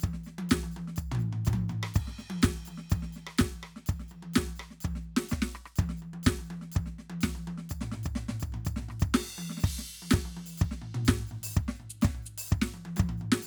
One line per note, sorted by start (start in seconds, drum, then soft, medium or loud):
0.01 kick loud
0.01 high tom loud
0.01 percussion medium
0.14 snare soft
0.24 snare soft
0.24 percussion soft
0.39 high tom loud
0.50 kick loud
0.50 snare loud
0.50 percussion medium
0.64 high tom medium
0.72 percussion soft
0.77 high tom loud
0.88 snare soft
0.97 kick medium
0.97 percussion medium
1.12 floor tom loud
1.12 high tom loud
1.20 percussion soft
1.33 floor tom medium
1.46 kick loud
1.46 floor tom loud
1.46 percussion medium
1.54 high tom loud
1.69 floor tom loud
1.69 percussion soft
1.84 high tom loud
1.95 kick loud
1.95 percussion medium
1.95 ride medium
2.08 snare soft
2.19 snare soft
2.19 percussion soft
2.31 high tom loud
2.43 kick loud
2.43 snare loud
2.43 percussion medium
2.56 high tom soft
2.66 high tom medium
2.66 percussion medium
2.78 snare soft
2.91 kick loud
2.91 high tom loud
2.91 percussion medium
3.03 snare soft
3.13 snare soft
3.13 percussion soft
3.27 high tom medium
3.39 kick loud
3.39 snare loud
3.39 percussion medium
3.51 high tom medium
3.64 high tom medium
3.77 snare soft
3.87 kick loud
3.87 high tom medium
3.87 percussion medium
4.00 snare soft
4.09 high tom medium
4.09 percussion soft
4.23 high tom medium
4.34 snare loud
4.34 percussion medium
4.38 kick medium
4.48 high tom medium
4.56 high tom medium
4.56 percussion soft
4.71 snare soft
4.81 high tom medium
4.81 percussion medium
4.85 kick loud
4.96 snare soft
5.02 percussion soft
5.17 snare loud
5.29 snare medium
5.29 percussion medium
5.33 kick loud
5.43 snare medium
5.51 percussion soft
5.56 cross-stick medium
5.66 cross-stick medium
5.76 kick loud
5.76 percussion medium
5.81 high tom loud
5.90 snare medium
5.98 percussion soft
6.03 high tom medium
6.14 high tom medium
6.24 kick loud
6.24 snare loud
6.24 percussion medium
6.39 high tom medium
6.45 percussion soft
6.51 high tom loud
6.62 snare soft
6.72 high tom medium
6.72 percussion medium
6.77 kick loud
6.87 snare soft
6.99 snare soft
7.10 high tom loud
7.21 kick medium
7.21 snare loud
7.21 percussion medium
7.36 high tom medium
7.43 percussion soft
7.48 high tom loud
7.58 snare soft
7.70 kick medium
7.70 percussion medium
7.82 snare medium
7.82 floor tom medium
7.92 snare medium
7.92 floor tom medium
8.04 kick loud
8.04 percussion medium
8.16 snare medium
8.16 floor tom medium
8.29 snare medium
8.29 floor tom medium
8.40 kick medium
8.40 percussion medium
8.53 floor tom medium
8.53 high tom medium
8.66 kick loud
8.66 percussion medium
8.77 snare medium
8.77 floor tom medium
8.89 cross-stick medium
8.89 floor tom medium
9.00 kick loud
9.00 percussion medium
9.14 snare loud
9.14 crash loud
9.39 high tom loud
9.50 snare medium
9.58 snare medium
9.58 percussion medium
9.64 kick loud
9.64 crash loud
9.79 snare soft
10.03 high tom medium
10.11 kick loud
10.11 snare loud
10.11 percussion medium
10.26 high tom medium
10.37 high tom medium
10.47 percussion medium
10.58 kick loud
10.58 high tom medium
10.58 percussion medium
10.72 snare medium
10.82 floor tom medium
10.95 floor tom loud
11.06 kick loud
11.06 snare loud
11.06 percussion medium
11.20 floor tom medium
11.28 percussion soft
11.32 floor tom medium
11.44 percussion loud
11.54 kick loud
11.54 floor tom soft
11.54 percussion medium
11.69 snare medium
11.76 percussion soft
11.80 floor tom medium
11.90 floor tom medium
12.02 kick loud
12.02 snare loud
12.02 percussion medium
12.15 floor tom medium
12.23 percussion soft
12.23 floor tom medium
12.38 percussion loud
12.48 floor tom medium
12.48 percussion medium
12.53 kick loud
12.62 snare loud
12.75 high tom medium
12.86 high tom medium
12.97 kick loud
12.97 high tom loud
12.97 percussion medium
13.10 floor tom medium
13.18 floor tom medium
13.18 percussion soft
13.33 snare loud
13.43 percussion medium